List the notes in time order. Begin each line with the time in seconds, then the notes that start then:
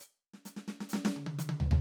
0.00 hi-hat pedal
0.33 snare
0.45 snare, hi-hat pedal
0.56 snare
0.68 snare
0.80 snare
0.89 hi-hat pedal
0.93 snare
1.05 snare
1.16 closed hi-hat, high tom
1.26 high tom
1.39 hi-hat pedal, high tom
1.49 high tom
1.60 floor tom
1.71 floor tom